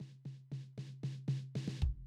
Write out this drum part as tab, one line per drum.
SD |o-o-o-o-o-o-oo--|
FT |o-o-o-o-o-o-oo--|
BD |--------------o-|